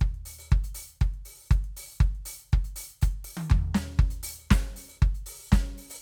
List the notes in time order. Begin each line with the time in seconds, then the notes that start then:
0.01 kick, closed hi-hat
0.15 closed hi-hat
0.26 open hi-hat
0.39 open hi-hat
0.47 hi-hat pedal
0.52 kick, closed hi-hat
0.64 closed hi-hat
0.75 open hi-hat
0.90 open hi-hat
0.96 hi-hat pedal
1.01 kick, closed hi-hat
1.14 closed hi-hat
1.26 open hi-hat
1.42 open hi-hat
1.47 hi-hat pedal
1.51 kick, closed hi-hat
1.64 closed hi-hat
1.77 open hi-hat
1.91 open hi-hat
1.97 kick, hi-hat pedal
2.02 closed hi-hat
2.15 closed hi-hat
2.26 open hi-hat
2.40 open hi-hat
2.49 hi-hat pedal
2.53 kick, closed hi-hat
2.65 closed hi-hat
2.76 open hi-hat
2.89 open hi-hat
2.98 closed hi-hat, hi-hat pedal
3.03 kick
3.11 closed hi-hat
3.25 open hi-hat
3.37 high tom
3.46 hi-hat pedal
3.50 kick, floor tom
3.75 snare
3.97 kick, hi-hat pedal
4.02 closed hi-hat
4.11 closed hi-hat
4.23 open hi-hat
4.39 open hi-hat
4.48 kick, snare, hi-hat pedal
4.77 open hi-hat
4.88 open hi-hat
4.97 hi-hat pedal
5.03 kick, closed hi-hat
5.15 closed hi-hat
5.26 open hi-hat
5.40 open hi-hat
5.50 kick, snare, hi-hat pedal
5.66 closed hi-hat
5.78 open hi-hat
5.91 open hi-hat
5.97 hi-hat pedal